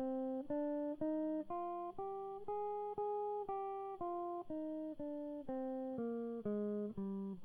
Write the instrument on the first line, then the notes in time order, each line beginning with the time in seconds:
electric guitar
0.00 C4
0.51 D4
1.02 D#4
1.51 F4
1.99 G4
2.49 G#4
2.98 G#4
3.49 G4
4.01 F4
4.51 D#4
5.00 D4
5.49 C4
5.99 A#3
6.46 G#3
6.99 G3